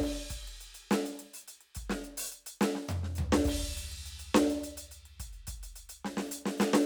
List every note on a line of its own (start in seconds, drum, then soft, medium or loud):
0.01 kick soft
0.01 crash medium
0.30 closed hi-hat medium
0.30 kick soft
0.48 closed hi-hat soft
0.61 closed hi-hat soft
0.75 closed hi-hat medium
0.91 snare loud
1.06 closed hi-hat medium
1.19 closed hi-hat medium
1.34 open hi-hat medium
1.48 closed hi-hat medium
1.61 closed hi-hat soft
1.75 closed hi-hat medium
1.75 kick soft
1.90 snare medium
2.04 open hi-hat medium
2.04 hi-hat pedal soft
2.18 open hi-hat loud
2.32 closed hi-hat medium
2.47 closed hi-hat medium
2.61 snare loud
2.76 snare soft
2.89 hi-hat pedal medium
2.89 mid tom loud
3.04 snare soft
3.16 floor tom loud
3.16 hi-hat pedal medium
3.33 snare loud
3.45 kick medium
3.45 hi-hat pedal medium
3.45 crash loud
3.52 kick soft
3.56 kick soft
3.77 closed hi-hat medium
3.92 closed hi-hat soft
4.06 closed hi-hat soft
4.19 closed hi-hat medium
4.35 snare loud
4.50 closed hi-hat medium
4.64 closed hi-hat medium
4.77 closed hi-hat medium
4.91 closed hi-hat soft
5.06 closed hi-hat soft
5.20 closed hi-hat medium
5.20 kick soft
5.33 closed hi-hat soft
5.47 closed hi-hat medium
5.47 kick soft
5.63 closed hi-hat medium
5.76 closed hi-hat medium
5.89 closed hi-hat medium
6.05 snare medium
6.17 snare medium
6.26 hi-hat pedal soft
6.32 closed hi-hat loud
6.46 snare loud
6.58 snare loud
6.58 hi-hat pedal soft
6.74 snare loud
6.82 hi-hat pedal soft